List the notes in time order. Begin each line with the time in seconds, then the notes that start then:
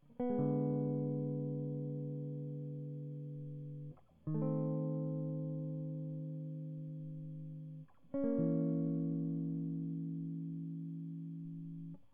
0.20 B3
0.30 G#3
0.39 D3
4.28 D#3
4.35 A3
4.42 C4
8.14 C#4
8.24 A#3
8.39 E3